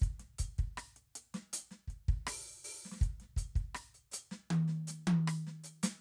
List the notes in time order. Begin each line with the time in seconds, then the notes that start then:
0.01 kick, closed hi-hat, hi-hat pedal
0.20 snare, closed hi-hat
0.39 closed hi-hat, kick
0.59 kick, closed hi-hat
0.78 cross-stick, closed hi-hat
0.97 closed hi-hat
1.16 closed hi-hat
1.35 snare, closed hi-hat
1.54 closed hi-hat
1.72 snare, closed hi-hat
1.88 kick, snare, closed hi-hat
2.09 kick, closed hi-hat
2.27 open hi-hat, cross-stick
2.65 open hi-hat
2.86 snare
2.92 snare
2.97 snare, hi-hat pedal
3.02 kick, closed hi-hat
3.21 snare, closed hi-hat
3.37 closed hi-hat, kick
3.56 kick, closed hi-hat
3.75 cross-stick, closed hi-hat
3.95 closed hi-hat
4.12 closed hi-hat, hi-hat pedal
4.32 snare
4.51 hi-hat pedal, high tom
4.69 snare
4.88 snare, hi-hat pedal
5.08 high tom
5.28 cross-stick
5.48 snare
5.64 closed hi-hat, hi-hat pedal
5.84 closed hi-hat, snare